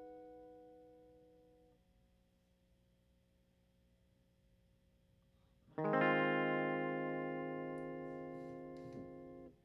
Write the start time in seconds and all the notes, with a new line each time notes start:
5.79 D#3
5.85 G#3
5.94 C4
6.02 F4